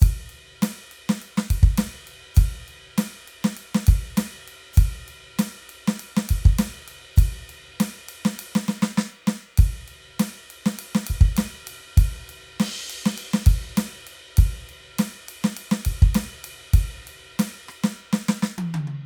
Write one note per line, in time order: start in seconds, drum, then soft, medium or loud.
0.00 kick loud
0.00 hi-hat pedal medium
0.00 ride loud
0.29 ride medium
0.62 snare loud
0.62 ride loud
0.92 ride medium
1.09 snare loud
1.22 ride medium
1.38 snare loud
1.50 kick medium
1.50 ride loud
1.63 kick loud
1.78 snare loud
1.78 ride loud
2.07 ride medium
2.35 kick loud
2.35 hi-hat pedal medium
2.35 ride loud
2.68 ride soft
2.98 snare loud
2.98 ride loud
3.28 ride medium
3.44 snare loud
3.57 ride medium
3.75 snare loud
3.87 kick loud
3.87 ride loud
4.17 snare loud
4.17 ride loud
4.48 ride medium
4.74 hi-hat pedal medium
4.78 kick loud
4.78 ride loud
5.08 ride medium
5.39 snare loud
5.39 ride loud
5.70 ride medium
5.88 snare loud
6.00 ride loud
6.17 snare loud
6.29 kick medium
6.29 ride loud
6.45 kick loud
6.59 snare loud
6.59 ride loud
6.88 ride medium
7.16 kick loud
7.16 hi-hat pedal medium
7.16 ride loud
7.50 ride medium
7.80 snare loud
7.80 ride loud
8.09 ride loud
8.25 snare loud
8.39 ride loud
8.55 snare loud
8.68 snare loud
8.82 snare loud
8.98 snare loud
9.27 snare loud
9.58 kick loud
9.58 ride loud
9.88 ride medium
10.20 snare loud
10.20 ride loud
10.50 ride medium
10.66 snare loud
10.79 ride loud
10.95 snare loud
11.07 kick medium
11.07 ride loud
11.21 kick loud
11.37 snare loud
11.37 ride loud
11.67 ride loud
11.97 kick loud
11.97 ride loud
12.29 ride medium
12.60 snare loud
12.60 ride loud
12.90 ride loud
13.06 snare loud
13.18 ride loud
13.34 snare loud
13.46 kick loud
13.46 ride loud
13.77 snare loud
13.77 ride loud
14.07 ride medium
14.37 kick loud
14.37 ride loud
14.69 ride medium
14.99 snare loud
14.99 ride loud
15.29 ride loud
15.44 snare loud
15.57 ride loud
15.71 snare loud
15.85 kick medium
15.85 ride loud
16.02 kick loud
16.15 snare loud
16.15 ride loud
16.44 ride loud
16.74 kick loud
16.74 ride loud
17.07 ride medium
17.39 snare loud
17.39 ride loud
17.69 cross-stick medium
17.84 snare loud
18.13 snare loud
18.29 snare loud
18.43 snare loud
18.58 high tom loud
18.74 mid tom loud
18.87 mid tom medium